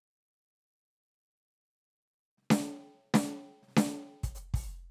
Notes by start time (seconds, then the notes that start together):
2.37 snare
2.42 snare
2.48 snare
2.50 snare
2.98 snare
3.03 snare
3.06 snare
3.14 snare
3.62 snare
3.67 snare
3.71 snare
3.77 snare
4.23 closed hi-hat, kick
4.35 hi-hat pedal
4.54 open hi-hat, kick